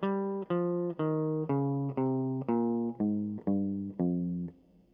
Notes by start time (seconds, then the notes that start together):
0.03 G3
0.51 F3
1.00 D#3
1.51 C#3
1.98 C3
2.50 A#2
3.02 G#2
3.48 G2
4.01 F2